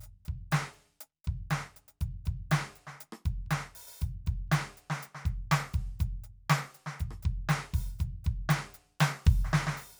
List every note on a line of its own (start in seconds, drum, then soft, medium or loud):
0.01 closed hi-hat medium
0.01 hi-hat pedal medium
0.26 closed hi-hat medium
0.26 kick soft
0.52 closed hi-hat loud
0.52 snare loud
0.74 open hi-hat soft
1.01 closed hi-hat loud
1.25 closed hi-hat medium
1.25 kick medium
1.51 closed hi-hat medium
1.51 snare loud
1.77 closed hi-hat medium
1.89 closed hi-hat medium
2.01 closed hi-hat medium
2.01 kick medium
2.26 closed hi-hat medium
2.26 kick medium
2.52 closed hi-hat loud
2.52 snare loud
2.76 closed hi-hat medium
2.88 snare soft
3.01 closed hi-hat loud
3.13 cross-stick medium
3.26 closed hi-hat medium
3.26 kick medium
3.47 kick soft
3.51 closed hi-hat loud
3.51 snare loud
3.76 open hi-hat medium
3.88 open hi-hat medium
4.01 closed hi-hat medium
4.01 kick medium
4.01 hi-hat pedal soft
4.27 closed hi-hat medium
4.27 kick medium
4.49 kick soft
4.49 snare loud
4.53 closed hi-hat loud
4.78 closed hi-hat medium
4.91 snare medium
5.03 closed hi-hat loud
5.15 snare soft
5.26 closed hi-hat medium
5.26 kick medium
5.52 closed hi-hat loud
5.52 snare loud
5.74 closed hi-hat medium
5.74 kick medium
6.00 closed hi-hat medium
6.00 kick medium
6.00 hi-hat pedal medium
6.24 closed hi-hat medium
6.50 closed hi-hat loud
6.50 snare loud
6.74 closed hi-hat medium
6.74 hi-hat pedal soft
6.87 snare medium
7.00 closed hi-hat medium
7.00 kick medium
7.11 cross-stick soft
7.23 closed hi-hat medium
7.23 kick medium
7.50 closed hi-hat medium
7.50 snare loud
7.74 open hi-hat medium
7.74 kick medium
7.99 closed hi-hat medium
7.99 kick medium
7.99 hi-hat pedal medium
8.25 closed hi-hat medium
8.25 kick medium
8.50 closed hi-hat loud
8.50 snare loud
8.75 closed hi-hat medium
9.01 closed hi-hat loud
9.01 snare loud
9.26 open hi-hat medium
9.26 kick loud
9.45 snare soft
9.54 snare loud
9.68 snare medium
9.78 open hi-hat medium